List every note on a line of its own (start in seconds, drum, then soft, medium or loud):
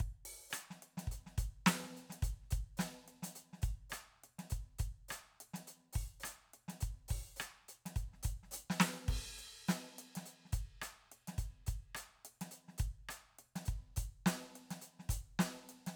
0.00 kick soft
0.00 closed hi-hat soft
0.25 open hi-hat medium
0.50 closed hi-hat loud
0.50 cross-stick medium
0.50 hi-hat pedal medium
0.70 snare soft
0.82 closed hi-hat soft
0.97 snare soft
0.97 closed hi-hat medium
1.07 kick soft
1.11 closed hi-hat medium
1.26 snare soft
1.38 closed hi-hat medium
1.38 kick soft
1.66 closed hi-hat medium
1.66 snare loud
1.66 hi-hat pedal medium
1.84 snare soft
1.96 closed hi-hat soft
2.10 snare soft
2.10 closed hi-hat medium
2.22 closed hi-hat medium
2.22 kick soft
2.43 snare soft
2.51 closed hi-hat medium
2.51 kick soft
2.77 closed hi-hat medium
2.77 snare medium
2.77 hi-hat pedal medium
3.08 closed hi-hat soft
3.22 closed hi-hat medium
3.22 snare soft
3.35 closed hi-hat medium
3.53 snare soft
3.62 open hi-hat medium
3.62 kick soft
3.90 closed hi-hat medium
3.90 cross-stick medium
3.90 hi-hat pedal medium
4.24 closed hi-hat soft
4.38 snare soft
4.38 closed hi-hat soft
4.50 closed hi-hat medium
4.50 kick soft
4.79 closed hi-hat medium
4.79 kick soft
5.08 closed hi-hat medium
5.08 cross-stick medium
5.08 hi-hat pedal medium
5.40 closed hi-hat medium
5.53 snare soft
5.53 closed hi-hat medium
5.67 closed hi-hat medium
5.93 open hi-hat medium
5.93 kick soft
6.20 cross-stick medium
6.20 hi-hat pedal medium
6.25 closed hi-hat loud
6.53 closed hi-hat soft
6.68 snare soft
6.68 closed hi-hat medium
6.80 closed hi-hat medium
6.80 kick soft
7.08 open hi-hat medium
7.08 kick soft
7.36 cross-stick medium
7.36 hi-hat pedal medium
7.40 closed hi-hat medium
7.68 closed hi-hat medium
7.85 snare soft
7.85 closed hi-hat medium
7.96 closed hi-hat medium
7.96 kick soft
8.13 snare soft
8.23 closed hi-hat medium
8.23 kick soft
8.43 snare soft
8.51 closed hi-hat loud
8.51 hi-hat pedal medium
8.70 snare medium
8.80 snare loud
9.08 kick soft
9.08 crash medium
9.38 closed hi-hat medium
9.68 closed hi-hat medium
9.68 snare medium
9.68 hi-hat pedal medium
9.98 closed hi-hat medium
10.15 snare soft
10.15 closed hi-hat medium
10.26 closed hi-hat medium
10.45 snare soft
10.52 closed hi-hat medium
10.52 kick soft
10.82 closed hi-hat medium
10.82 cross-stick medium
11.12 closed hi-hat soft
11.27 snare soft
11.27 closed hi-hat medium
11.38 closed hi-hat medium
11.38 kick soft
11.66 closed hi-hat medium
11.66 kick soft
11.95 closed hi-hat medium
11.95 cross-stick medium
12.25 closed hi-hat medium
12.41 snare soft
12.41 closed hi-hat medium
12.51 closed hi-hat medium
12.68 snare soft
12.78 closed hi-hat medium
12.78 kick soft
13.09 closed hi-hat medium
13.09 cross-stick medium
13.39 closed hi-hat soft
13.55 snare soft
13.55 closed hi-hat medium
13.65 closed hi-hat medium
13.65 kick soft
13.96 closed hi-hat medium
13.96 kick soft
14.26 closed hi-hat medium
14.26 snare medium
14.55 closed hi-hat soft
14.70 snare soft
14.70 closed hi-hat medium
14.81 closed hi-hat medium
14.99 snare soft
15.09 closed hi-hat loud
15.09 kick soft
15.39 closed hi-hat medium
15.39 snare medium
15.69 closed hi-hat medium
15.86 snare soft
15.86 closed hi-hat medium